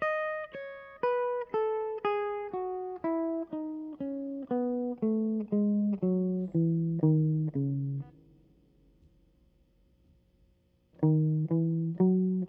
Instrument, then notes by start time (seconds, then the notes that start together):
electric guitar
0.02 D#5
0.55 C#5
1.03 B4
1.54 A4
2.05 G#4
2.54 F#4
3.04 E4
3.53 D#4
4.01 C#4
4.51 B3
5.03 A3
5.53 G#3
6.03 F#3
6.56 E3
7.04 D#3
7.56 C#3
11.04 D#3
11.52 E3
12.01 F#3